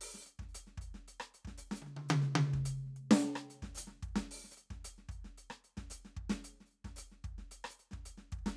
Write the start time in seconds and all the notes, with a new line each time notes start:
0.01 open hi-hat
0.14 snare
0.22 hi-hat pedal
0.26 closed hi-hat
0.39 kick, snare
0.49 hi-hat pedal
0.55 closed hi-hat
0.67 snare
0.78 closed hi-hat, kick
0.94 snare
1.08 closed hi-hat
1.20 cross-stick
1.25 hi-hat pedal
1.34 closed hi-hat
1.45 kick, snare
1.58 closed hi-hat, hi-hat pedal
1.71 snare
1.75 hi-hat pedal
1.82 high tom
1.86 snare
1.97 high tom
2.09 hi-hat pedal, high tom
2.22 snare
2.35 high tom
2.54 kick, snare
2.65 closed hi-hat
2.86 snare
2.96 closed hi-hat
3.11 snare
3.24 closed hi-hat
3.36 cross-stick
3.50 closed hi-hat
3.62 kick, snare
3.75 closed hi-hat, hi-hat pedal
3.87 snare
4.03 kick, closed hi-hat
4.08 kick
4.16 snare
4.31 open hi-hat
4.44 snare
4.51 hi-hat pedal
4.57 closed hi-hat
4.70 kick, snare
4.76 kick
4.85 closed hi-hat
4.98 snare
5.09 closed hi-hat, kick
5.25 snare
5.38 closed hi-hat
5.50 cross-stick
5.64 closed hi-hat
5.77 kick, snare
5.90 closed hi-hat, hi-hat pedal
6.05 snare
6.17 kick
6.30 snare
6.44 closed hi-hat
6.60 snare
6.66 hi-hat pedal
6.71 closed hi-hat
6.84 kick, snare
6.96 closed hi-hat, hi-hat pedal
7.12 snare
7.24 closed hi-hat, kick
7.38 snare
7.51 open hi-hat
7.64 cross-stick
7.70 hi-hat pedal
7.79 closed hi-hat
7.91 kick, snare
7.99 kick
8.06 closed hi-hat
8.18 snare
8.32 kick, closed hi-hat
8.39 kick
8.46 snare